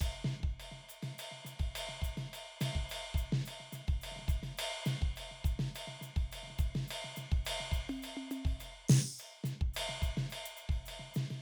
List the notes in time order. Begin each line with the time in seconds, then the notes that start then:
0.01 kick, hi-hat pedal, ride
0.25 snare, hi-hat pedal
0.40 kick, snare
0.60 hi-hat pedal, ride bell
0.72 snare
0.89 hi-hat pedal, ride
1.03 snare, ride
1.18 hi-hat pedal, ride bell
1.32 snare
1.45 snare, hi-hat pedal, ride
1.59 kick, ride
1.75 hi-hat pedal, ride bell
1.89 snare
2.02 kick, hi-hat pedal, ride
2.17 snare, ride
2.33 hi-hat pedal, ride bell
2.61 snare, hi-hat pedal, ride
2.75 kick, snare
2.89 hi-hat pedal, ride bell
3.15 kick, hi-hat pedal
3.21 ride
3.33 snare
3.45 hi-hat pedal, ride bell
3.60 snare
3.73 snare, hi-hat pedal, ride
3.88 kick, ride
4.01 hi-hat pedal, ride bell
4.12 snare
4.16 snare
4.19 snare
4.22 snare
4.28 kick, hi-hat pedal, ride
4.43 snare, ride
4.58 hi-hat pedal, ride
4.85 snare, hi-hat pedal, ride
5.01 kick, snare
5.16 hi-hat pedal, ride bell
5.31 snare
5.45 kick, hi-hat pedal, ride
5.59 snare, ride
5.75 hi-hat pedal, ride bell
5.88 snare
6.02 snare, hi-hat pedal, ride
6.16 kick, ride
6.32 hi-hat pedal, ride bell
6.43 snare
6.48 snare
6.50 snare
6.59 kick, hi-hat pedal, ride
6.75 snare, ride
6.88 hi-hat pedal, ride bell
7.04 snare
7.16 snare, hi-hat pedal, ride
7.32 kick, ride
7.45 hi-hat pedal, ride
7.60 snare
7.72 kick, hi-hat pedal, ride
7.89 open hi-hat, high tom, ride
8.02 hi-hat pedal, ride bell
8.17 high tom
8.31 hi-hat pedal, high tom, ride
8.45 kick, ride
8.60 hi-hat pedal, ride bell
8.89 snare, hi-hat pedal, crash
9.19 hi-hat pedal, ride
9.44 snare, hi-hat pedal
9.57 kick, snare
9.74 hi-hat pedal, ride
9.89 snare
10.02 kick, hi-hat pedal, ride
10.17 snare, ride
10.30 hi-hat pedal, ride bell
10.46 open hi-hat
10.57 hi-hat pedal, ride
10.69 kick, ride
10.86 hi-hat pedal, ride bell
11.00 snare
11.14 snare, hi-hat pedal, ride bell
11.30 snare, ride